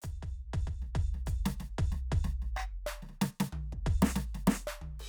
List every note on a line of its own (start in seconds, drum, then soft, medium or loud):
0.02 kick medium
0.02 hi-hat pedal medium
0.22 kick medium
0.53 kick loud
0.67 kick medium
0.82 snare soft
0.95 kick loud
1.14 snare soft
1.26 kick medium
1.26 hi-hat pedal medium
1.45 snare loud
1.60 snare medium
1.78 kick loud
1.92 snare soft
2.12 kick loud
2.24 snare medium
2.42 snare soft
2.56 percussion loud
2.86 percussion loud
3.02 snare soft
3.09 snare soft
3.21 snare loud
3.40 snare loud
3.52 floor tom loud
3.72 kick soft
3.86 kick loud
4.02 snare loud
4.16 snare loud
4.34 snare soft
4.47 snare loud
4.67 percussion loud
4.81 floor tom medium
4.99 crash medium